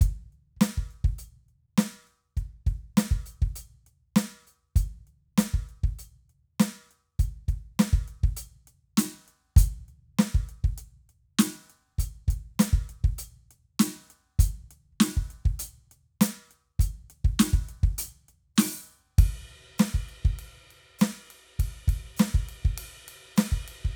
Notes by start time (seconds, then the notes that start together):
0.01 kick, closed hi-hat
0.33 closed hi-hat
0.57 kick
0.61 closed hi-hat, snare
0.78 kick
0.91 closed hi-hat
1.04 kick
1.19 closed hi-hat
1.49 closed hi-hat
1.78 closed hi-hat, snare
2.07 closed hi-hat
2.37 kick, closed hi-hat
2.67 kick, closed hi-hat
2.97 closed hi-hat, snare
3.11 kick
3.26 closed hi-hat
3.42 kick
3.56 closed hi-hat
3.87 closed hi-hat
4.16 closed hi-hat, snare
4.47 closed hi-hat
4.76 closed hi-hat, kick
5.07 closed hi-hat
5.38 closed hi-hat, kick, snare
5.54 kick
5.69 closed hi-hat
5.84 kick
5.99 closed hi-hat
6.30 closed hi-hat
6.60 closed hi-hat, snare
6.91 closed hi-hat
7.19 closed hi-hat, kick
7.48 kick, closed hi-hat
7.79 closed hi-hat, snare
7.93 kick
8.08 closed hi-hat
8.23 kick
8.37 closed hi-hat
8.67 closed hi-hat
8.97 closed hi-hat, snare
9.28 closed hi-hat
9.56 closed hi-hat, kick
9.88 closed hi-hat
10.19 closed hi-hat, snare
10.35 kick
10.49 closed hi-hat
10.64 kick
10.78 closed hi-hat
11.09 closed hi-hat
11.39 closed hi-hat, snare
11.70 closed hi-hat
11.98 closed hi-hat, kick
12.28 kick, closed hi-hat
12.60 closed hi-hat, snare
12.73 kick
12.89 closed hi-hat
13.04 kick
13.19 closed hi-hat
13.51 closed hi-hat
13.80 closed hi-hat, snare
14.10 closed hi-hat
14.39 closed hi-hat, kick
14.71 closed hi-hat
14.92 kick
15.00 closed hi-hat, snare
15.17 kick
15.30 closed hi-hat
15.45 kick
15.59 closed hi-hat
15.91 closed hi-hat
16.21 closed hi-hat, snare
16.51 closed hi-hat
16.79 closed hi-hat, kick
17.10 closed hi-hat
17.25 kick
17.39 closed hi-hat, snare
17.53 kick
17.69 closed hi-hat
17.83 kick
17.98 closed hi-hat
18.29 closed hi-hat
18.56 open hi-hat, snare, hi-hat pedal
19.18 kick, ride
19.50 ride
19.78 snare, hi-hat pedal, ride
19.94 kick
20.09 ride
20.25 kick, crash
20.39 ride
20.71 ride
20.99 snare, hi-hat pedal, ride
21.30 ride
21.59 kick, ride
21.88 kick, ride
22.17 snare, hi-hat pedal, ride
22.34 kick
22.49 ride
22.65 kick
22.78 ride
23.08 ride
23.36 snare, hi-hat pedal, ride
23.52 kick
23.68 ride
23.85 kick